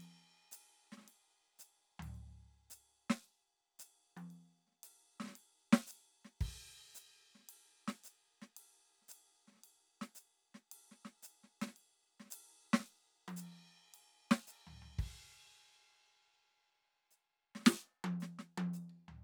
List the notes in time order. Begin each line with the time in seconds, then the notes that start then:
0.01 ride
0.52 hi-hat pedal, ride
0.93 snare
0.98 snare
1.02 snare
1.05 snare, ride
1.60 hi-hat pedal, ride
2.00 floor tom, ride
2.15 ride
2.71 hi-hat pedal, ride
3.10 snare, ride
3.25 ride
3.80 hi-hat pedal, ride
4.17 high tom, ride
4.31 ride
4.68 snare
4.72 snare
4.84 hi-hat pedal, ride
5.21 snare
5.24 snare
5.27 snare
5.30 snare
5.32 snare, ride
5.73 snare
5.87 hi-hat pedal
5.92 ride
6.25 snare
6.41 kick, crash
6.95 hi-hat pedal, ride
7.35 snare
7.39 snare
7.43 snare
7.49 ride
7.88 snare, ride
8.04 hi-hat pedal, ride
8.42 snare
8.57 ride
9.02 snare
9.09 hi-hat pedal, ride
9.48 snare
9.52 snare
9.55 snare
9.57 snare
9.64 ride
10.02 snare, ride
10.16 hi-hat pedal, ride
10.55 snare
10.72 ride
10.92 snare
11.05 snare
11.23 hi-hat pedal, ride
11.44 snare
11.62 snare, ride
11.67 snare
11.77 ride
12.20 snare
12.24 snare
12.26 snare
12.31 hi-hat pedal, ride
12.74 snare
12.80 snare
12.87 ride
13.28 high tom, ride
13.37 hi-hat pedal, ride
13.95 ride
14.32 snare
14.48 hi-hat pedal, ride
14.67 floor tom
14.83 floor tom
14.99 kick, crash
17.11 hi-hat pedal
17.56 snare
17.60 snare
17.63 snare, hi-hat pedal
17.67 snare
18.05 high tom
18.21 snare, hi-hat pedal
18.39 snare
18.58 high tom
18.74 hi-hat pedal
18.90 floor tom
19.09 floor tom